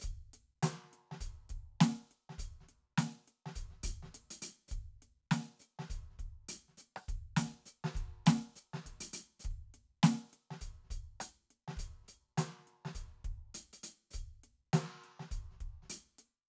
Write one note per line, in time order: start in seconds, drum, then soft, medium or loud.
0.01 closed hi-hat medium
0.01 hi-hat pedal medium
0.05 kick soft
0.35 closed hi-hat medium
0.64 closed hi-hat loud
0.64 snare loud
0.94 closed hi-hat soft
1.13 snare soft
1.22 closed hi-hat medium
1.22 kick soft
1.51 kick soft
1.51 closed hi-hat medium
1.82 closed hi-hat loud
1.82 snare loud
2.12 closed hi-hat soft
2.31 snare soft
2.40 closed hi-hat medium
2.40 kick soft
2.62 snare soft
2.69 snare soft
2.69 closed hi-hat soft
2.99 closed hi-hat loud
2.99 snare medium
3.29 closed hi-hat soft
3.47 snare medium
3.57 closed hi-hat medium
3.57 kick soft
3.72 snare soft
3.85 closed hi-hat loud
3.85 kick soft
3.94 kick soft
4.04 snare soft
4.16 closed hi-hat medium
4.32 closed hi-hat loud
4.44 closed hi-hat loud
4.70 kick soft
4.70 closed hi-hat medium
4.70 hi-hat pedal medium
5.04 closed hi-hat soft
5.33 closed hi-hat medium
5.33 snare loud
5.61 closed hi-hat soft
5.61 hi-hat pedal soft
5.80 snare medium
5.91 closed hi-hat medium
5.91 kick soft
6.12 snare soft
6.17 kick soft
6.17 snare soft
6.17 closed hi-hat soft
6.50 closed hi-hat loud
6.70 snare soft
6.79 closed hi-hat soft
6.79 hi-hat pedal medium
6.98 cross-stick medium
7.10 kick soft
7.10 closed hi-hat medium
7.16 kick soft
7.19 kick soft
7.38 closed hi-hat loud
7.38 snare loud
7.67 closed hi-hat soft
7.67 hi-hat pedal medium
7.86 snare medium
7.96 kick soft
7.96 closed hi-hat medium
8.02 kick soft
8.06 kick soft
8.28 closed hi-hat loud
8.28 snare loud
8.57 hi-hat pedal medium
8.75 snare medium
8.87 kick soft
8.87 closed hi-hat medium
9.02 closed hi-hat loud
9.15 closed hi-hat loud
9.41 hi-hat pedal medium
9.45 kick soft
9.45 closed hi-hat medium
9.52 kick soft
9.75 closed hi-hat soft
10.05 closed hi-hat loud
10.05 snare loud
10.14 snare soft
10.29 hi-hat pedal soft
10.34 closed hi-hat soft
10.52 snare medium
10.63 closed hi-hat medium
10.63 kick soft
10.85 snare soft
10.92 closed hi-hat medium
10.92 kick soft
11.22 closed hi-hat loud
11.22 cross-stick medium
11.52 closed hi-hat soft
11.69 snare medium
11.78 closed hi-hat medium
11.78 kick soft
12.05 snare soft
12.10 closed hi-hat medium
12.39 closed hi-hat loud
12.39 snare loud
12.69 closed hi-hat soft
12.87 snare medium
12.96 closed hi-hat medium
12.96 kick soft
13.26 kick soft
13.26 closed hi-hat soft
13.56 closed hi-hat loud
13.75 closed hi-hat medium
13.85 closed hi-hat loud
14.12 closed hi-hat medium
14.12 kick soft
14.12 hi-hat pedal medium
14.45 closed hi-hat soft
14.75 closed hi-hat loud
14.75 snare loud
15.05 closed hi-hat soft
15.21 snare soft
15.33 closed hi-hat medium
15.33 kick soft
15.52 snare soft
15.62 kick soft
15.62 closed hi-hat soft
15.84 snare soft
15.89 closed hi-hat loud
15.89 snare soft
16.20 open hi-hat medium